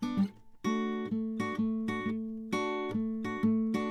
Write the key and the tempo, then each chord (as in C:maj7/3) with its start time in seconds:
D major, 130 BPM
0.23 D:maj/5